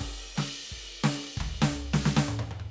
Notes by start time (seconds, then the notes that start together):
0.01 kick, snare, crash
0.36 snare, hi-hat pedal, ride
0.60 ride
0.73 kick, ride
1.05 snare, hi-hat pedal, ride
1.28 ride
1.38 kick, floor tom
1.63 snare
1.94 snare
2.06 snare
2.18 snare
2.29 high tom
2.40 high tom
2.52 mid tom
2.61 mid tom